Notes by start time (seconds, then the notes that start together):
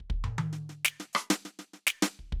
0.00 kick
0.10 kick
0.24 mid tom
0.38 high tom
0.53 snare
0.69 snare
0.85 snare
1.00 snare
1.13 cross-stick, hi-hat pedal
1.30 snare
1.45 snare
1.59 snare
1.73 snare
1.87 snare
2.02 snare
2.19 kick
2.32 kick